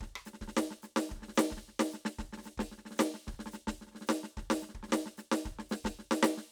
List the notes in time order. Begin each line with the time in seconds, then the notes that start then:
0.01 kick, snare
0.16 cross-stick
0.26 snare, hi-hat pedal
0.34 snare
0.42 kick, snare
0.48 snare
0.57 snare
0.71 snare
0.83 snare, hi-hat pedal
0.97 snare
1.10 kick, snare
1.15 snare
1.19 kick, snare
1.23 snare
1.29 snare
1.35 snare, hi-hat pedal
1.51 kick, snare
1.57 snare
1.69 snare
1.80 snare
1.91 snare, hi-hat pedal
2.06 snare
2.19 kick, snare
2.25 kick
2.33 snare
2.38 snare
2.44 snare, hi-hat pedal
2.46 snare
2.58 kick, snare
2.63 kick
2.72 snare
2.78 snare
2.85 snare
2.91 snare
2.96 snare, hi-hat pedal
3.00 snare
3.14 snare
3.27 kick, snare
3.35 kick
3.40 snare
3.46 snare
3.52 snare, hi-hat pedal
3.68 kick, snare
3.82 snare
3.87 snare
3.92 snare
3.95 snare
4.01 snare
4.07 snare, hi-hat pedal
4.24 snare
4.37 kick, snare
4.51 snare
4.60 snare, hi-hat pedal
4.69 snare
4.75 kick, snare
4.83 snare
4.89 snare
4.93 snare
5.06 snare
5.18 snare, hi-hat pedal
5.32 snare
5.46 kick, snare
5.52 kick
5.59 snare
5.70 snare, hi-hat pedal
5.85 kick, snare
5.90 kick
5.99 snare
6.11 snare
6.23 snare, hi-hat pedal
6.38 snare